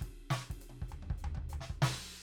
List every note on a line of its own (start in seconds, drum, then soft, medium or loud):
0.01 kick medium
0.01 hi-hat pedal soft
0.01 ride medium
0.30 snare loud
0.30 hi-hat pedal medium
0.30 ride medium
0.50 kick medium
0.50 ride medium
0.61 hi-hat pedal medium
0.61 ride soft
0.70 high tom medium
0.82 kick medium
0.88 floor tom medium
0.88 hi-hat pedal soft
1.02 mid tom medium
1.10 kick medium
1.18 hi-hat pedal soft
1.24 floor tom loud
1.35 kick medium
1.35 high tom medium
1.49 floor tom medium
1.49 hi-hat pedal medium
1.61 snare medium
1.70 kick medium
1.82 snare loud
1.82 crash loud